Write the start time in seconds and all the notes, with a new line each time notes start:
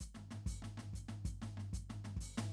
0.00 kick, hi-hat pedal
0.14 snare, floor tom
0.31 snare, floor tom
0.46 kick, hi-hat pedal
0.62 snare, floor tom
0.77 snare, floor tom
0.93 kick, hi-hat pedal
1.08 snare, floor tom
1.25 kick, hi-hat pedal
1.42 snare, floor tom
1.57 snare, floor tom
1.73 kick, hi-hat pedal
1.89 snare, floor tom
2.04 snare, floor tom
2.16 kick
2.21 hi-hat pedal
2.37 snare, floor tom